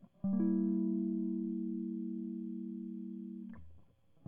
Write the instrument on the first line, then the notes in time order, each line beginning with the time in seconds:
electric guitar
0.25 G3
0.34 A#3
0.40 E4